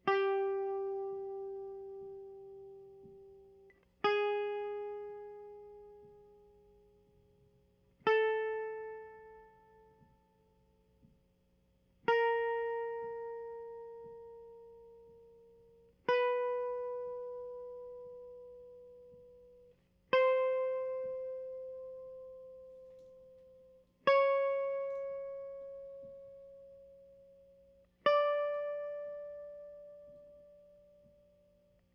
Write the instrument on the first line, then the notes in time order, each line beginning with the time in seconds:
electric guitar
0.07 G4
4.04 G#4
8.07 A4
12.08 A#4
16.08 B4
20.13 C5
24.07 C#5
28.06 D5